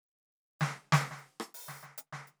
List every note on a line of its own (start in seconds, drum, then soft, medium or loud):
0.59 snare loud
0.59 hi-hat pedal medium
0.92 snare loud
1.11 snare soft
1.18 hi-hat pedal soft
1.40 cross-stick medium
1.54 open hi-hat medium
1.68 snare soft
1.83 snare soft
1.83 hi-hat pedal medium
1.98 closed hi-hat loud
2.12 snare medium
2.27 closed hi-hat soft